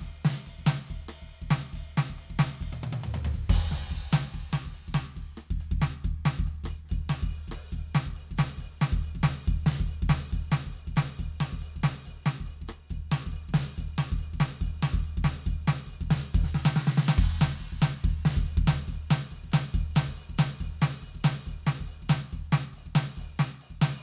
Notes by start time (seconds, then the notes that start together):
0.01 kick, snare, ride
0.25 snare, ride
0.46 kick, ride
0.59 kick
0.66 snare, ride
0.75 snare
0.86 snare, ride
0.90 kick
1.08 cross-stick, ride
1.22 kick, snare
1.29 ride
1.42 kick
1.51 snare, ride
1.73 kick, snare, ride
1.97 snare, ride
2.10 kick, snare
2.18 ride
2.30 kick
2.39 snare, ride
2.54 snare
2.61 kick, ride
2.73 high tom
2.83 high tom
2.93 high tom
3.04 floor tom
3.14 floor tom
3.25 floor tom
3.34 kick
3.49 kick, crash
3.71 snare
3.91 kick, percussion
4.13 snare, percussion
4.34 kick, percussion
4.53 snare, percussion
4.66 kick, snare
4.74 percussion
4.88 kick
4.94 snare, percussion
5.14 kick, snare, percussion
5.37 cross-stick, percussion
5.50 kick
5.56 snare
5.60 percussion
5.71 kick
5.82 snare, percussion
6.02 kick, snare, percussion
6.25 snare, percussion
6.38 kick, snare
6.47 percussion
6.64 kick, cross-stick, percussion
6.85 snare
6.89 kick, percussion
7.09 snare, percussion
7.23 kick, snare
7.31 percussion
7.48 kick, cross-stick
7.52 percussion
7.70 kick, snare
7.75 percussion
7.95 snare, percussion
8.06 kick
8.16 percussion
8.31 kick
8.38 snare, percussion
8.58 kick, snare, percussion
8.81 snare, percussion
8.92 kick
8.96 snare
9.03 percussion
9.15 kick
9.23 snare, percussion
9.44 kick, snare, percussion
9.66 snare, percussion
9.80 kick
9.88 percussion
10.02 kick
10.09 snare, percussion
10.31 kick, percussion
10.52 snare, percussion
10.66 kick
10.71 snare, percussion
10.87 kick
10.96 snare, percussion
11.18 kick, percussion
11.40 snare, percussion
11.53 kick
11.60 snare, percussion
11.76 kick
11.83 snare, percussion
12.04 kick, snare, percussion
12.26 snare, percussion
12.40 kick
12.46 percussion
12.61 kick
12.68 cross-stick, percussion
12.90 kick, percussion
13.11 snare, percussion
13.25 kick, snare
13.32 percussion
13.49 kick
13.54 snare, percussion
13.76 kick, snare, percussion
13.98 snare, percussion
14.12 kick
14.19 percussion
14.33 kick
14.40 snare, percussion
14.61 kick, percussion
14.83 snare, percussion
14.94 kick, snare
15.04 percussion
15.17 kick
15.24 snare, percussion
15.46 kick, percussion
15.67 snare, percussion
15.86 kick, percussion
16.01 kick
16.11 snare, percussion
16.34 kick, percussion
16.44 snare
16.54 snare
16.65 snare
16.76 snare
16.87 snare
16.97 snare
17.08 snare
17.18 kick, crash
17.41 snare, percussion
17.60 kick, percussion
17.72 kick
17.82 snare, percussion
18.02 kick, snare, percussion
18.25 snare, percussion
18.37 kick, snare
18.47 percussion
18.57 kick
18.67 snare, percussion
18.82 snare
18.88 kick, percussion
19.10 snare, percussion
19.31 kick, percussion
19.44 kick
19.52 snare, percussion
19.73 kick, snare, percussion
19.96 snare, percussion
20.08 kick, snare
20.17 percussion
20.29 kick
20.38 snare, percussion
20.60 kick, percussion
20.82 snare, percussion
21.02 kick, percussion
21.15 kick
21.24 snare, percussion
21.45 kick, percussion
21.67 snare, percussion
21.80 kick, snare
21.88 percussion
22.02 kick
22.09 snare, percussion
22.31 kick, percussion
22.52 snare, percussion
22.73 kick, snare, percussion
22.86 kick
22.95 snare, percussion
23.17 kick, percussion
23.39 snare, percussion
23.60 snare, percussion
23.70 kick
23.82 snare, percussion